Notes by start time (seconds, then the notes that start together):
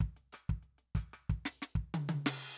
0.01 kick, closed hi-hat
0.17 closed hi-hat
0.33 closed hi-hat, cross-stick
0.50 kick
0.63 closed hi-hat
0.79 closed hi-hat
0.96 closed hi-hat, kick, cross-stick
1.14 cross-stick
1.30 kick, closed hi-hat
1.46 snare
1.63 snare
1.76 kick
1.95 high tom
2.10 high tom
2.27 snare, crash